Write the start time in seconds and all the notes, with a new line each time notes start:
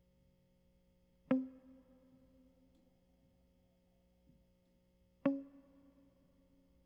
1.31 C4
5.26 C#4